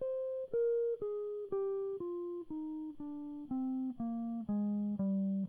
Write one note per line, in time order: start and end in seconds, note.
0.02 0.48 C5
0.54 0.97 A#4
1.02 1.49 G#4
1.53 2.00 G4
2.01 2.45 F4
2.51 2.96 D#4
3.01 3.49 D4
3.51 3.94 C4
4.01 4.47 A#3
4.50 4.99 G#3
5.00 5.48 G3